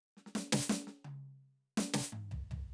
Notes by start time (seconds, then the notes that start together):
0.17 snare
0.26 snare
0.35 snare
0.52 snare
0.69 snare
0.87 snare
1.04 high tom
1.77 snare
1.94 snare
2.12 mid tom
2.31 floor tom
2.51 floor tom